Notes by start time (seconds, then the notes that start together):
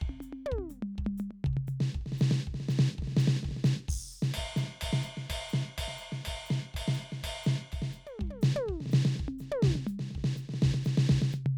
0.02 kick
0.08 kick, high tom
0.13 kick
0.21 hi-hat pedal, high tom
0.33 high tom
0.46 high tom
0.52 kick
0.59 kick, high tom
0.70 hi-hat pedal, mid tom
0.83 mid tom
0.96 kick, mid tom
1.06 kick, mid tom
1.18 hi-hat pedal, mid tom
1.32 mid tom
1.45 kick, floor tom
1.54 kick, floor tom
1.68 hi-hat pedal, floor tom
1.81 snare
1.94 kick, snare
1.99 kick, snare
2.02 snare
2.07 snare
2.13 snare
2.18 snare, hi-hat pedal
2.32 snare
2.42 snare
2.48 kick, snare
2.55 snare
2.61 snare
2.69 snare, hi-hat pedal
2.80 snare
2.90 snare
2.96 kick, snare
3.02 kick, snare
3.08 snare
3.13 snare
3.18 snare, hi-hat pedal
3.28 snare
3.37 snare
3.44 kick, snare
3.49 kick, snare
3.52 snare
3.57 snare
3.65 snare, hi-hat pedal
3.77 snare
3.89 kick, crash
3.94 kick
4.03 kick
4.12 hi-hat pedal
4.23 snare
4.35 kick, ride bell
4.44 kick
4.57 snare, hi-hat pedal
4.64 snare
4.82 kick, ride bell
4.89 kick
4.94 snare
5.04 hi-hat pedal, ride
5.18 snare
5.30 kick, ride
5.50 hi-hat pedal
5.54 snare
5.79 kick, ride bell
5.85 kick, snare
5.98 hi-hat pedal, ride
6.13 snare
6.26 kick, ride bell
6.34 kick
6.46 hi-hat pedal
6.51 snare
6.75 kick, ride bell
6.81 kick
6.89 snare
6.94 hi-hat pedal
6.99 ride
7.13 snare
7.24 kick, ride bell
7.30 kick
7.44 snare, hi-hat pedal
7.73 kick, ride bell
7.80 kick, snare
7.93 hi-hat pedal
8.07 closed hi-hat, high tom
8.20 kick, mid tom
8.28 kick, high tom
8.42 snare, hi-hat pedal
8.56 high tom
8.67 kick, snare
8.73 snare
8.81 snare
8.87 snare
8.90 snare, hi-hat pedal
8.94 snare
9.06 snare
9.16 kick, snare
9.27 kick, high tom
9.39 snare, hi-hat pedal
9.52 high tom
9.63 snare
9.67 kick
9.74 kick, snare
9.88 hi-hat pedal, mid tom
10.00 snare
10.11 snare
10.16 kick, snare
10.25 snare
10.37 snare, hi-hat pedal
10.50 snare
10.55 snare
10.63 kick, snare
10.75 snare
10.85 snare, hi-hat pedal
10.98 snare
11.10 kick, snare
11.23 snare
11.33 floor tom, hi-hat pedal
11.47 floor tom